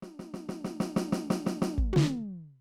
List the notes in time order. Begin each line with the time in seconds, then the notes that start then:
0.02 snare, floor tom
0.19 snare, floor tom
0.33 snare, floor tom
0.48 snare, floor tom
0.65 snare, floor tom
0.80 snare, floor tom
0.96 snare, floor tom
1.12 snare, floor tom
1.29 snare, floor tom
1.45 snare, floor tom
1.61 snare, floor tom
1.78 kick
1.92 snare, floor tom